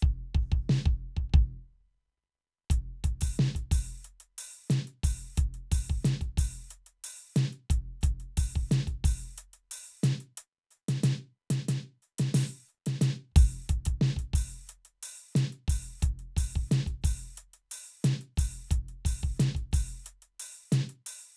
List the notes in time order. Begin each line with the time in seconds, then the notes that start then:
0.01 kick, hi-hat pedal
0.35 kick
0.40 kick, crash
0.52 kick
0.70 snare
0.86 kick
1.17 kick
1.30 kick
1.34 kick
2.70 closed hi-hat, kick
3.04 open hi-hat, kick
3.21 open hi-hat, kick
3.37 snare, hi-hat pedal
3.55 kick, closed hi-hat
3.72 open hi-hat, kick
4.04 closed hi-hat, hi-hat pedal
4.20 closed hi-hat
4.38 open hi-hat
4.67 closed hi-hat, snare, hi-hat pedal
4.87 closed hi-hat
5.04 open hi-hat, kick
5.35 closed hi-hat, kick, hi-hat pedal
5.54 closed hi-hat
5.72 open hi-hat, kick
5.90 kick
6.02 closed hi-hat, snare, hi-hat pedal
6.21 kick, closed hi-hat
6.38 open hi-hat, kick
6.69 closed hi-hat, hi-hat pedal
6.86 closed hi-hat
7.04 open hi-hat
7.34 closed hi-hat, snare, hi-hat pedal
7.53 closed hi-hat
7.70 open hi-hat, kick
8.01 closed hi-hat, kick, hi-hat pedal
8.20 closed hi-hat
8.37 open hi-hat, kick
8.56 kick
8.69 closed hi-hat, snare, hi-hat pedal
8.87 kick, closed hi-hat
9.04 open hi-hat, kick
9.37 closed hi-hat, hi-hat pedal
9.53 closed hi-hat
9.71 open hi-hat
10.02 closed hi-hat, snare, hi-hat pedal
10.20 closed hi-hat
10.38 open hi-hat
10.71 hi-hat pedal
10.89 snare, closed hi-hat
11.04 closed hi-hat, snare
11.50 closed hi-hat, snare
11.69 closed hi-hat, snare
12.02 hi-hat pedal
12.19 closed hi-hat, snare
12.34 open hi-hat, snare
12.68 hi-hat pedal
12.86 snare, closed hi-hat
13.01 open hi-hat, snare
13.32 kick
13.36 open hi-hat, kick
13.66 closed hi-hat, kick, hi-hat pedal
13.86 closed hi-hat, kick
14.01 snare
14.17 kick, closed hi-hat
14.34 open hi-hat, kick
14.67 closed hi-hat, hi-hat pedal
14.85 closed hi-hat
15.03 open hi-hat
15.33 closed hi-hat, snare, hi-hat pedal
15.53 closed hi-hat
15.68 open hi-hat, kick
16.00 closed hi-hat, kick, hi-hat pedal
16.19 closed hi-hat
16.37 open hi-hat, kick
16.56 kick
16.68 closed hi-hat, snare, hi-hat pedal
16.87 kick, closed hi-hat
17.02 open hi-hat, kick, hi-hat pedal
17.36 closed hi-hat, hi-hat pedal
17.54 closed hi-hat
17.70 open hi-hat, hi-hat pedal
18.02 closed hi-hat, snare, hi-hat pedal
18.21 closed hi-hat
18.36 open hi-hat, kick, hi-hat pedal
18.68 closed hi-hat, kick, hi-hat pedal
18.89 closed hi-hat
19.05 open hi-hat, kick
19.23 kick
19.36 closed hi-hat, snare, hi-hat pedal
19.55 kick, closed hi-hat
19.72 open hi-hat, kick, hi-hat pedal
20.04 closed hi-hat, hi-hat pedal
20.22 closed hi-hat
20.40 open hi-hat
20.70 closed hi-hat, snare, hi-hat pedal
20.89 closed hi-hat
21.06 open hi-hat